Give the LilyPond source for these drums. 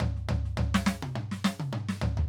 \new DrumStaff \drummode { \time 4/4 \tempo 4 = 105 tomfh16 sn16 tomfh16 sn16 tomfh16 sn16 sn16 tommh16 toml16 sn16 sn16 tommh16 toml16 sn16 tomfh16 tomfh16 | }